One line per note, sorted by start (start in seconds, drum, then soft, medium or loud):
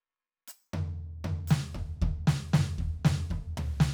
0.48 percussion loud
0.73 mid tom loud
1.24 mid tom loud
1.47 snare loud
1.47 percussion medium
1.47 crash soft
1.74 kick medium
1.74 mid tom medium
2.02 kick medium
2.02 mid tom medium
2.27 snare loud
2.27 mid tom medium
2.53 snare loud
2.53 mid tom loud
2.53 floor tom medium
2.59 snare medium
2.78 kick medium
2.78 mid tom soft
3.05 snare loud
3.05 mid tom loud
3.30 kick medium
3.30 mid tom medium
3.57 floor tom loud
3.80 snare loud